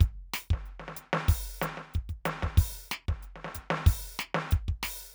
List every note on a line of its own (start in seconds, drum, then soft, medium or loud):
0.01 open hi-hat loud
0.01 kick loud
0.34 open hi-hat loud
0.34 snare loud
0.34 hi-hat pedal soft
0.51 kick medium
0.51 snare soft
0.66 closed hi-hat soft
0.80 snare soft
0.88 snare medium
0.95 closed hi-hat loud
0.95 kick soft
1.13 snare loud
1.29 open hi-hat loud
1.29 kick loud
1.62 closed hi-hat loud
1.62 snare loud
1.62 hi-hat pedal medium
1.78 snare medium
1.94 closed hi-hat medium
1.94 kick medium
2.10 kick soft
2.10 closed hi-hat soft
2.26 closed hi-hat loud
2.26 snare loud
2.43 kick medium
2.43 snare medium
2.58 open hi-hat loud
2.58 kick loud
2.91 closed hi-hat loud
2.91 snare loud
2.91 hi-hat pedal medium
3.09 kick medium
3.09 snare soft
3.23 closed hi-hat medium
3.36 snare soft
3.45 snare medium
3.48 snare soft
3.55 closed hi-hat loud
3.55 kick soft
3.71 snare loud
3.78 snare soft
3.87 open hi-hat loud
3.87 kick loud
4.19 closed hi-hat loud
4.19 snare loud
4.19 hi-hat pedal medium
4.35 snare loud
4.51 closed hi-hat loud
4.51 kick medium
4.69 kick medium
4.83 open hi-hat loud
4.83 kick soft
4.83 snare loud